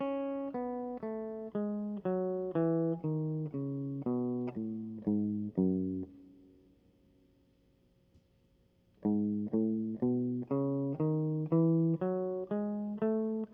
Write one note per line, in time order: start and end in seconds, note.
0.01 0.55 C#4
0.55 1.01 B3
1.04 1.52 A3
1.56 2.03 G#3
2.06 2.55 F#3
2.56 2.97 E3
3.05 3.51 D#3
3.56 4.06 C#3
4.08 4.54 B2
4.58 5.01 A2
5.01 5.07 G#2
5.10 5.54 G#2
5.60 6.08 F#2
9.07 9.51 G#2
9.55 10.01 A2
10.04 10.46 B2
10.52 10.98 C#3
11.01 11.49 D#3
11.53 11.98 E3
12.02 12.47 F#3
12.52 13.01 G#3
13.03 13.48 A3